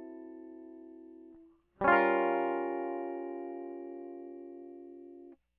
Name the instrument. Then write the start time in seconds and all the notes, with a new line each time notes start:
electric guitar
1.82 G3 C#4
1.88 F4
1.93 A#4